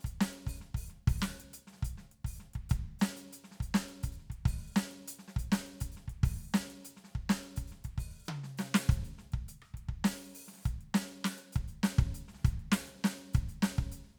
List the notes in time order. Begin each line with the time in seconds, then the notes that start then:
0.01 kick, snare, hi-hat pedal
0.06 closed hi-hat
0.21 snare
0.33 closed hi-hat
0.47 open hi-hat, kick
0.56 hi-hat pedal
0.61 snare
0.75 open hi-hat, kick
0.88 snare, hi-hat pedal
0.96 snare
1.08 open hi-hat, kick
1.19 snare, hi-hat pedal
1.40 closed hi-hat
1.54 closed hi-hat
1.67 snare
1.73 snare
1.77 snare
1.83 closed hi-hat, kick
1.98 snare
2.12 closed hi-hat
2.25 open hi-hat, kick
2.35 hi-hat pedal
2.40 snare
2.54 kick, closed hi-hat
2.70 closed hi-hat, kick
2.99 snare, hi-hat pedal
3.17 closed hi-hat, snare
3.33 closed hi-hat
3.44 snare
3.52 snare
3.55 snare
3.60 closed hi-hat, kick
3.74 snare
3.89 closed hi-hat
4.01 open hi-hat, kick, snare
4.12 hi-hat pedal
4.19 snare
4.30 kick, closed hi-hat
4.46 open hi-hat, kick
4.76 snare, hi-hat pedal
4.91 closed hi-hat
5.08 closed hi-hat
5.19 snare
5.28 snare
5.36 closed hi-hat, kick
5.52 snare
5.66 closed hi-hat
5.81 open hi-hat, kick
5.92 hi-hat pedal
5.97 snare
6.08 kick, closed hi-hat
6.23 open hi-hat, kick
6.54 snare, hi-hat pedal
6.70 closed hi-hat
6.85 closed hi-hat
6.97 snare
7.04 snare
7.08 snare
7.15 kick, closed hi-hat
7.30 snare
7.44 closed hi-hat
7.56 open hi-hat, kick
7.68 hi-hat pedal
7.72 snare
7.81 kick, snare, closed hi-hat
7.98 open hi-hat, kick
8.10 snare
8.13 snare
8.26 hi-hat pedal, high tom
8.44 snare
8.58 snare, hi-hat pedal
8.75 snare
8.89 closed hi-hat, kick
9.05 closed hi-hat
9.18 snare
9.32 kick, closed hi-hat
9.49 closed hi-hat
9.62 cross-stick
9.74 kick, closed hi-hat
9.89 kick
10.05 open hi-hat, snare
10.35 open hi-hat
10.48 snare
10.54 snare
10.57 snare
10.61 snare, hi-hat pedal
10.65 closed hi-hat, kick, snare
10.81 closed hi-hat
10.94 snare
11.02 snare
11.09 closed hi-hat
11.25 snare
11.33 snare
11.38 snare, closed hi-hat
11.53 closed hi-hat, kick
11.68 closed hi-hat
11.83 snare
11.97 kick, snare, closed hi-hat
12.15 closed hi-hat
12.28 snare
12.34 snare
12.38 snare
12.42 closed hi-hat, kick, snare
12.60 closed hi-hat
12.72 snare
12.87 closed hi-hat
13.04 snare
13.13 snare
13.19 closed hi-hat
13.34 closed hi-hat, kick
13.49 closed hi-hat
13.63 snare
13.78 kick, closed hi-hat
13.92 closed hi-hat
14.04 snare
14.07 snare